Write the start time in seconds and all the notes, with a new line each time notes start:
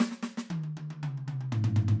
0.00 snare
0.11 snare
0.23 snare
0.38 snare
0.50 high tom
0.64 high tom
0.77 high tom
0.91 high tom
1.03 mid tom
1.18 mid tom
1.28 mid tom
1.41 mid tom
1.52 floor tom
1.64 floor tom
1.76 floor tom
1.89 floor tom